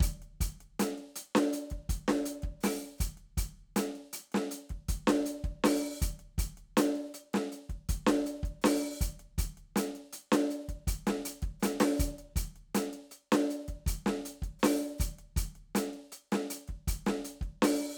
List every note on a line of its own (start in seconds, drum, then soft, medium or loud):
0.01 closed hi-hat loud
0.01 kick loud
0.23 closed hi-hat soft
0.41 closed hi-hat loud
0.41 kick medium
0.61 closed hi-hat soft
0.80 closed hi-hat loud
0.80 snare loud
0.98 closed hi-hat soft
1.16 closed hi-hat loud
1.36 snare loud
1.36 closed hi-hat soft
1.54 closed hi-hat medium
1.71 kick soft
1.71 closed hi-hat medium
1.90 closed hi-hat loud
1.90 kick medium
2.09 snare loud
2.09 closed hi-hat soft
2.26 closed hi-hat loud
2.43 kick medium
2.43 closed hi-hat soft
2.61 open hi-hat loud
2.61 snare loud
2.61 hi-hat pedal medium
2.99 closed hi-hat loud
2.99 kick medium
2.99 hi-hat pedal medium
3.18 closed hi-hat soft
3.38 closed hi-hat loud
3.38 kick medium
3.60 closed hi-hat soft
3.77 closed hi-hat loud
3.77 snare loud
3.96 closed hi-hat soft
4.14 closed hi-hat loud
4.33 snare loud
4.33 closed hi-hat soft
4.41 snare soft
4.52 closed hi-hat loud
4.70 kick soft
4.70 closed hi-hat soft
4.89 closed hi-hat loud
4.89 kick medium
5.08 snare loud
5.27 closed hi-hat medium
5.45 kick medium
5.45 closed hi-hat soft
5.65 open hi-hat loud
5.65 snare loud
6.01 closed hi-hat loud
6.01 kick medium
6.01 hi-hat pedal medium
6.20 closed hi-hat soft
6.39 closed hi-hat loud
6.39 kick medium
6.58 closed hi-hat soft
6.78 closed hi-hat loud
6.78 snare loud
6.96 closed hi-hat soft
7.15 closed hi-hat medium
7.34 snare loud
7.34 closed hi-hat medium
7.53 closed hi-hat medium
7.70 kick soft
7.70 closed hi-hat soft
7.90 closed hi-hat loud
7.90 kick medium
8.07 snare loud
8.27 closed hi-hat medium
8.44 kick medium
8.44 closed hi-hat medium
8.62 open hi-hat loud
8.62 snare loud
8.62 hi-hat pedal medium
9.00 closed hi-hat loud
9.00 kick medium
9.00 hi-hat pedal medium
9.20 closed hi-hat soft
9.39 closed hi-hat loud
9.39 kick medium
9.58 closed hi-hat soft
9.77 open hi-hat loud
9.77 snare loud
9.96 closed hi-hat medium
10.13 closed hi-hat loud
10.33 snare loud
10.33 closed hi-hat medium
10.51 closed hi-hat medium
10.69 kick soft
10.69 closed hi-hat medium
10.88 closed hi-hat loud
10.88 kick medium
11.08 snare loud
11.08 closed hi-hat medium
11.26 closed hi-hat loud
11.43 kick medium
11.43 closed hi-hat medium
11.60 closed hi-hat loud
11.60 snare loud
11.60 hi-hat pedal soft
11.81 snare loud
11.81 open hi-hat loud
11.98 closed hi-hat loud
11.98 kick medium
11.98 hi-hat pedal soft
12.19 closed hi-hat medium
12.37 closed hi-hat loud
12.37 kick medium
12.56 closed hi-hat soft
12.75 closed hi-hat loud
12.75 snare loud
12.94 closed hi-hat medium
13.12 closed hi-hat medium
13.33 snare loud
13.33 closed hi-hat medium
13.51 closed hi-hat medium
13.69 kick soft
13.69 closed hi-hat medium
13.87 closed hi-hat loud
13.87 kick medium
14.07 snare loud
14.26 closed hi-hat medium
14.43 kick medium
14.43 closed hi-hat medium
14.60 snare loud
14.60 hi-hat pedal soft
14.64 open hi-hat loud
14.99 closed hi-hat loud
14.99 kick medium
14.99 hi-hat pedal medium
15.19 closed hi-hat soft
15.37 closed hi-hat loud
15.37 kick medium
15.56 closed hi-hat soft
15.76 closed hi-hat loud
15.76 snare loud
15.94 closed hi-hat soft
16.13 closed hi-hat medium
16.32 snare loud
16.32 closed hi-hat medium
16.51 closed hi-hat loud
16.68 kick soft
16.68 closed hi-hat soft
16.88 closed hi-hat loud
16.88 kick medium
17.07 snare loud
17.07 closed hi-hat medium
17.25 closed hi-hat medium
17.42 kick medium
17.42 closed hi-hat soft
17.63 open hi-hat loud
17.63 snare loud